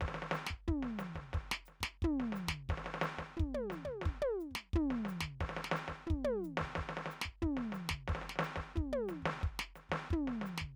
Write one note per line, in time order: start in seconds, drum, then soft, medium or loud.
0.01 kick soft
0.01 snare soft
0.08 snare soft
0.14 snare soft
0.22 snare soft
0.31 snare medium
0.31 hi-hat pedal soft
0.47 kick soft
0.47 snare medium
0.67 kick soft
0.67 floor tom medium
0.83 snare soft
0.99 snare soft
0.99 hi-hat pedal medium
1.15 kick soft
1.15 snare soft
1.33 kick soft
1.33 snare soft
1.52 snare loud
1.65 snare soft
1.65 hi-hat pedal soft
1.81 kick soft
1.81 snare medium
2.02 kick soft
2.02 floor tom medium
2.20 snare soft
2.32 snare soft
2.32 hi-hat pedal medium
2.48 kick soft
2.48 snare medium
2.69 kick soft
2.69 snare soft
2.78 snare soft
2.85 snare soft
2.86 snare soft
2.94 snare soft
3.02 snare medium
3.02 hi-hat pedal soft
3.18 kick soft
3.18 snare soft
3.36 kick soft
3.36 floor tom medium
3.54 high tom medium
3.70 snare soft
3.70 hi-hat pedal soft
3.85 kick soft
3.85 high tom medium
4.02 kick soft
4.02 snare soft
4.22 high tom loud
4.40 hi-hat pedal soft
4.51 kick soft
4.55 snare medium
4.73 kick soft
4.73 floor tom medium
4.91 snare soft
5.05 snare soft
5.05 hi-hat pedal medium
5.21 kick soft
5.21 snare medium
5.41 kick soft
5.41 snare soft
5.49 snare soft
5.57 snare medium
5.64 snare medium
5.72 snare medium
5.76 hi-hat pedal soft
5.88 kick soft
5.88 snare soft
6.06 floor tom medium
6.10 kick soft
6.24 high tom loud
6.44 hi-hat pedal medium
6.57 kick soft
6.57 snare medium
6.75 kick soft
6.75 snare medium
6.89 snare soft
6.97 snare medium
7.06 snare soft
7.11 hi-hat pedal medium
7.22 kick soft
7.22 snare medium
7.41 kick soft
7.41 floor tom medium
7.57 snare soft
7.72 snare soft
7.72 hi-hat pedal medium
7.89 kick soft
7.89 snare medium
8.08 kick soft
8.08 snare medium
8.15 snare soft
8.22 snare soft
8.29 snare soft
8.36 snare soft
8.39 snare medium
8.43 hi-hat pedal soft
8.56 kick soft
8.56 snare medium
8.75 kick soft
8.75 floor tom medium
8.93 high tom loud
9.08 snare soft
9.08 hi-hat pedal medium
9.22 kick soft
9.22 snare medium
9.41 kick soft
9.41 snare soft
9.59 snare medium
9.75 snare soft
9.75 hi-hat pedal soft
9.89 kick soft
9.89 snare medium
10.11 kick soft
10.11 floor tom medium
10.28 snare soft
10.42 snare soft
10.46 hi-hat pedal medium
10.58 kick soft
10.58 snare medium